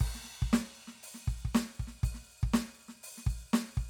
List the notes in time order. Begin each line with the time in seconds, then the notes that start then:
0.01 kick, crash
0.15 snare
0.25 snare, open hi-hat
0.43 kick
0.54 open hi-hat, snare
0.77 open hi-hat
0.88 snare
1.04 open hi-hat
1.15 snare
1.28 open hi-hat, kick
1.46 kick
1.55 open hi-hat, snare
1.78 kick, open hi-hat
1.88 snare
2.04 open hi-hat, kick
2.15 snare
2.28 open hi-hat, snare
2.44 kick
2.54 open hi-hat, snare
2.79 open hi-hat
2.89 snare
3.04 open hi-hat
3.18 snare
3.27 open hi-hat, kick
3.54 open hi-hat, snare
3.78 open hi-hat, kick